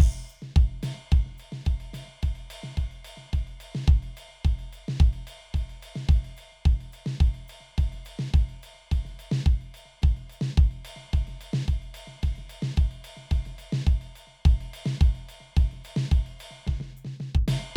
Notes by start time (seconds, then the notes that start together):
0.01 kick, crash, ride
0.31 hi-hat pedal, ride
0.44 snare
0.58 kick, ride
0.84 snare, hi-hat pedal, ride
1.13 kick, ride
1.28 snare
1.39 hi-hat pedal, ride
1.54 snare
1.67 kick, ride
1.82 ride
1.95 snare, hi-hat pedal, ride
2.09 snare
2.24 kick, ride
2.37 ride
2.52 hi-hat pedal, ride
2.65 snare
2.79 kick, ride
2.93 ride
3.06 hi-hat pedal, ride
3.19 snare
3.35 kick, ride
3.49 ride
3.62 hi-hat pedal, ride
3.77 snare
3.89 kick, ride
4.04 ride
4.18 hi-hat pedal, ride
4.30 snare
4.46 kick, ride
4.60 ride
4.74 hi-hat pedal, ride
4.90 snare
5.02 kick, ride
5.15 ride
5.29 hi-hat pedal, ride
5.56 kick, ride
5.71 ride
5.84 hi-hat pedal, ride
5.97 snare
6.10 kick, ride
6.26 ride
6.38 hi-hat pedal, ride
6.54 snare
6.67 kick, snare, ride
6.79 snare, ride
6.94 hi-hat pedal, ride
7.08 snare
7.22 kick, ride
7.36 ride
7.49 hi-hat pedal, ride
7.62 snare
7.80 kick, snare, ride
7.94 snare, ride
8.07 hi-hat pedal, ride
8.21 snare
8.35 kick, ride
8.50 ride
8.64 hi-hat pedal, ride
8.76 snare
8.93 kick, snare, ride
9.07 snare, ride
9.21 hi-hat pedal, ride
9.33 snare
9.48 kick, ride
9.63 ride
9.76 hi-hat pedal, ride
9.87 snare
10.04 kick, snare, ride
10.18 snare, ride
10.31 hi-hat pedal, ride
10.43 snare
10.59 kick, hi-hat pedal, ride
10.73 ride
10.86 hi-hat pedal, ride
10.98 snare
11.14 kick, snare, hi-hat pedal, ride
11.29 snare, ride
11.42 hi-hat pedal, ride
11.55 snare
11.69 kick, hi-hat pedal, ride
11.83 ride
11.96 hi-hat pedal, ride
12.09 snare
12.23 kick, snare, hi-hat pedal, ride
12.37 snare, ride
12.51 hi-hat pedal, ride
12.64 snare
12.77 kick, hi-hat pedal, ride
12.89 snare, ride
13.06 hi-hat pedal, ride
13.18 snare
13.33 kick, snare, ride
13.47 snare, ride
13.60 hi-hat pedal, ride
13.74 snare
13.88 kick, ride
14.03 ride
14.17 hi-hat pedal, ride
14.29 snare
14.47 kick, snare, hi-hat pedal, ride
14.62 snare, ride
14.75 hi-hat pedal, ride
14.88 snare
15.03 kick, hi-hat pedal, ride
15.17 ride
15.30 hi-hat pedal, ride
15.42 snare
15.58 kick, snare, hi-hat pedal, ride
15.73 snare, ride
15.86 hi-hat pedal, ride
15.98 snare
16.13 kick, hi-hat pedal, ride
16.28 ride
16.41 hi-hat pedal, ride
16.52 snare
16.68 kick, snare, floor tom, hi-hat pedal
16.82 snare, floor tom
16.98 hi-hat pedal
17.06 snare, floor tom
17.22 snare, floor tom
17.36 kick
17.50 snare, ride
17.72 snare